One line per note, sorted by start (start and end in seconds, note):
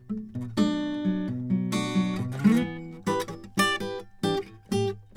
0.11 0.39 A3
0.36 0.51 B2
0.58 1.22 B2
0.58 0.97 F#3
0.58 0.75 A3
0.58 1.31 D4
0.58 1.04 F#4
1.06 1.43 F#3
1.30 2.15 B2
1.51 1.90 F#3
1.73 1.87 A3
1.73 2.23 D4
1.73 2.21 F#4
1.96 2.37 F#3
2.20 2.51 C3
2.51 3.02 E3
2.51 2.66 B3
3.08 3.26 E3
3.08 3.25 B3
3.08 3.25 D4
3.08 3.27 G4
3.08 3.24 B4
3.30 3.38 E3
3.30 3.48 B3
3.30 3.38 D4
3.30 3.50 G4
3.35 3.46 D5
3.59 3.80 E3
3.59 3.79 C4
3.59 3.77 D4
3.59 3.78 G4
3.59 3.79 D5
3.81 3.93 E3
3.81 4.04 C4
3.81 3.96 D4
3.81 4.04 G4
3.81 4.03 B4
4.24 4.40 E3
4.24 4.43 B3
4.24 4.42 D4
4.24 4.44 G4
4.72 4.92 A2
4.72 4.93 G3
4.72 4.86 C4
4.72 4.95 G4